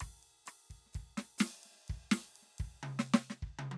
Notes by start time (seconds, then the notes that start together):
0.01 kick, cross-stick, hi-hat pedal, ride
0.08 kick
0.23 ride
0.46 cross-stick, hi-hat pedal, ride
0.71 kick, ride
0.87 snare
0.93 kick, hi-hat pedal, ride
1.18 snare, ride
1.38 snare, hi-hat pedal, ride
1.64 snare, ride
1.72 snare
1.75 snare
1.89 kick, ride
2.12 snare, ride
2.36 ride
2.43 snare
2.48 snare
2.59 kick, ride
2.83 mid tom
3.00 snare
3.14 snare
3.31 snare
3.43 kick
3.49 kick
3.59 mid tom
3.72 high tom